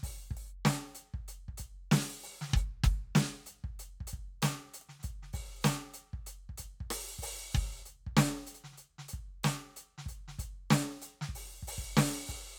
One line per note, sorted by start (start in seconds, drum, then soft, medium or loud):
0.04 open hi-hat medium
0.04 kick medium
0.32 kick medium
0.38 open hi-hat soft
0.66 closed hi-hat medium
0.66 snare loud
0.96 closed hi-hat medium
1.15 kick medium
1.29 closed hi-hat medium
1.49 kick medium
1.58 closed hi-hat medium
1.58 kick soft
1.92 open hi-hat medium
1.92 snare loud
2.24 open hi-hat medium
2.31 open hi-hat soft
2.42 snare medium
2.50 snare soft
2.54 open hi-hat medium
2.54 kick loud
2.60 hi-hat pedal soft
2.84 kick loud
2.84 closed hi-hat medium
3.16 closed hi-hat medium
3.16 snare loud
3.47 closed hi-hat medium
3.65 kick medium
3.80 closed hi-hat medium
4.01 kick medium
4.08 closed hi-hat medium
4.14 kick medium
4.43 closed hi-hat loud
4.43 snare medium
4.74 closed hi-hat medium
4.82 closed hi-hat soft
4.90 snare soft
5.00 open hi-hat medium
5.00 snare soft
5.05 kick medium
5.23 snare soft
5.34 open hi-hat medium
5.34 kick medium
5.63 closed hi-hat loud
5.63 snare loud
5.63 hi-hat pedal soft
5.94 closed hi-hat medium
6.14 kick medium
6.27 closed hi-hat medium
6.50 kick medium
6.58 closed hi-hat medium
6.58 kick soft
6.81 kick medium
6.91 open hi-hat loud
6.91 cross-stick medium
7.19 open hi-hat loud
7.19 kick medium
7.31 kick soft
7.55 open hi-hat medium
7.55 kick loud
7.86 closed hi-hat medium
8.07 kick medium
8.18 closed hi-hat loud
8.18 snare loud
8.48 closed hi-hat medium
8.55 closed hi-hat soft
8.65 snare soft
8.73 snare soft
8.78 closed hi-hat medium
8.99 snare soft
9.09 open hi-hat medium
9.14 kick medium
9.44 open hi-hat medium
9.44 snare medium
9.49 hi-hat pedal soft
9.77 closed hi-hat medium
9.99 snare soft
10.07 closed hi-hat medium
10.07 kick medium
10.29 snare soft
10.39 closed hi-hat medium
10.39 kick medium
10.71 closed hi-hat medium
10.71 snare loud
10.71 hi-hat pedal medium
11.03 open hi-hat medium
11.22 snare medium
11.30 kick medium
11.36 open hi-hat medium
11.63 kick medium
11.68 open hi-hat medium
11.79 kick medium
11.98 open hi-hat loud
11.98 snare loud
12.29 open hi-hat medium
12.29 kick medium